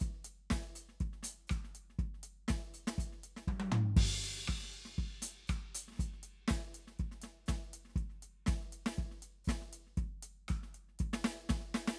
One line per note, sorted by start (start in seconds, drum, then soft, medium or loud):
0.01 closed hi-hat soft
0.01 kick medium
0.15 snare soft
0.25 closed hi-hat medium
0.51 kick medium
0.51 snare medium
0.51 closed hi-hat soft
0.65 closed hi-hat soft
0.76 closed hi-hat medium
0.90 snare soft
1.01 kick medium
1.01 closed hi-hat soft
1.14 snare soft
1.24 open hi-hat loud
1.24 snare soft
1.48 kick medium
1.48 cross-stick medium
1.48 closed hi-hat medium
1.48 hi-hat pedal soft
1.65 snare soft
1.76 closed hi-hat medium
1.91 snare soft
2.00 kick medium
2.00 closed hi-hat soft
2.15 snare soft
2.24 closed hi-hat medium
2.49 kick medium
2.49 snare medium
2.49 closed hi-hat medium
2.66 snare soft
2.75 closed hi-hat medium
2.88 snare medium
2.99 closed hi-hat soft
2.99 kick medium
3.13 snare soft
3.24 closed hi-hat medium
3.37 snare soft
3.48 kick medium
3.48 high tom medium
3.61 high tom loud
3.73 floor tom loud
3.97 kick medium
3.97 ride loud
4.22 closed hi-hat soft
4.22 snare soft
4.48 kick medium
4.48 cross-stick medium
4.64 snare soft
4.74 closed hi-hat soft
4.86 snare soft
4.98 closed hi-hat soft
4.98 kick medium
5.13 cross-stick soft
5.23 open hi-hat loud
5.23 snare soft
5.48 kick medium
5.48 cross-stick medium
5.48 closed hi-hat medium
5.48 hi-hat pedal soft
5.76 closed hi-hat loud
5.89 snare soft
5.93 snare soft
5.96 snare soft
5.98 closed hi-hat soft
5.98 kick medium
5.98 snare soft
6.14 snare soft
6.24 closed hi-hat medium
6.49 closed hi-hat soft
6.49 kick medium
6.49 snare medium
6.75 closed hi-hat medium
6.88 snare soft
7.00 kick medium
7.00 closed hi-hat soft
7.12 snare soft
7.22 snare soft
7.22 open hi-hat medium
7.47 kick medium
7.47 snare medium
7.47 closed hi-hat medium
7.47 hi-hat pedal soft
7.74 closed hi-hat medium
7.86 snare soft
7.90 snare soft
7.97 kick medium
7.97 closed hi-hat soft
8.10 snare soft
8.16 snare soft
8.23 kick soft
8.23 closed hi-hat medium
8.47 kick medium
8.47 snare medium
8.47 closed hi-hat medium
8.62 snare soft
8.73 closed hi-hat medium
8.87 snare medium
8.98 kick medium
8.98 closed hi-hat soft
9.12 snare soft
9.23 open hi-hat medium
9.45 kick medium
9.45 hi-hat pedal soft
9.50 snare medium
9.50 closed hi-hat medium
9.62 snare soft
9.74 closed hi-hat medium
9.87 snare soft
9.98 kick medium
9.98 closed hi-hat soft
10.23 closed hi-hat medium
10.49 kick medium
10.49 cross-stick medium
10.49 closed hi-hat medium
10.64 snare soft
10.75 closed hi-hat soft
10.89 snare soft
11.00 kick medium
11.00 closed hi-hat medium
11.14 snare medium
11.25 snare loud
11.50 kick medium
11.50 snare medium
11.61 snare soft
11.75 snare medium
11.88 snare medium